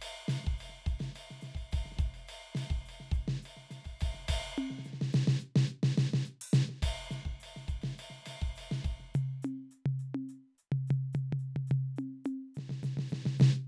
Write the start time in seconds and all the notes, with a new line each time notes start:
0.01 hi-hat pedal, ride bell
0.29 snare, hi-hat pedal, ride
0.45 kick, snare
0.58 hi-hat pedal, ride bell
0.70 snare
0.87 kick, hi-hat pedal, ride
1.00 snare, ride
1.15 hi-hat pedal, ride bell
1.31 snare
1.42 snare, hi-hat pedal, ride
1.55 kick, ride
1.72 kick, hi-hat pedal, ride bell
1.86 snare
1.92 snare
1.98 kick, snare, hi-hat pedal, ride
2.07 snare
2.15 ride
2.28 hi-hat pedal, ride bell
2.56 snare, hi-hat pedal, ride
2.71 kick, snare
2.86 hi-hat pedal, ride bell
3.01 snare
3.12 kick, hi-hat pedal
3.16 ride
3.28 snare
3.43 hi-hat pedal, ride bell
3.57 snare
3.71 snare, hi-hat pedal, ride
3.85 kick, ride
4.00 kick, hi-hat pedal, ride bell
4.15 snare
4.28 kick, hi-hat pedal, ride
4.42 snare
4.57 hi-hat pedal, high tom
4.71 snare
4.79 snare
4.85 snare, hi-hat pedal
4.94 snare
5.02 snare
5.13 snare, hi-hat pedal
5.28 snare
5.40 hi-hat pedal
5.56 snare
5.68 hi-hat pedal
5.84 snare
5.98 snare, hi-hat pedal
6.14 snare
6.26 hi-hat pedal
6.42 open hi-hat
6.54 snare, hi-hat pedal
6.70 snare
6.83 kick, hi-hat pedal, ride
6.99 kick
7.11 snare, hi-hat pedal
7.26 kick, snare
7.41 hi-hat pedal, ride bell
7.57 snare
7.68 kick, hi-hat pedal, ride
7.82 snare, ride
7.99 hi-hat pedal, ride bell
8.11 snare
8.26 snare, hi-hat pedal, ride
8.40 kick, ride
8.56 hi-hat pedal, ride bell
8.72 snare
8.85 kick, hi-hat pedal, ride
9.00 snare
9.15 floor tom, hi-hat pedal
9.43 closed hi-hat, hi-hat pedal, high tom
9.72 hi-hat pedal
9.86 floor tom
10.00 hi-hat pedal
10.15 high tom
10.29 hi-hat pedal
10.59 hi-hat pedal
10.72 floor tom
10.88 floor tom, hi-hat pedal
11.13 floor tom, hi-hat pedal
11.33 floor tom
11.40 hi-hat pedal
11.57 floor tom
11.68 hi-hat pedal
11.72 floor tom
11.97 hi-hat pedal, high tom
12.25 hi-hat pedal, high tom
12.55 floor tom, hi-hat pedal
12.59 snare
12.70 snare, floor tom
12.84 snare, floor tom, hi-hat pedal
12.98 snare, floor tom
13.10 snare, floor tom, hi-hat pedal
13.26 snare, floor tom
13.39 snare, hi-hat pedal, floor tom